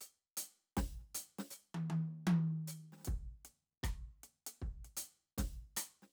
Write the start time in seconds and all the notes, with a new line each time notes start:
0.01 closed hi-hat
0.37 closed hi-hat
0.77 kick, snare, closed hi-hat
0.99 snare
1.15 closed hi-hat
1.39 snare
1.51 hi-hat pedal
1.75 high tom
1.90 high tom
2.27 high tom
2.68 hi-hat pedal
2.92 snare
2.97 snare
3.00 snare
3.03 snare, closed hi-hat
3.08 kick
3.45 closed hi-hat
3.83 kick, cross-stick, closed hi-hat
4.24 closed hi-hat
4.47 closed hi-hat
4.62 kick
4.85 closed hi-hat
4.97 closed hi-hat
5.38 kick, snare, closed hi-hat
5.77 closed hi-hat, cross-stick
6.02 snare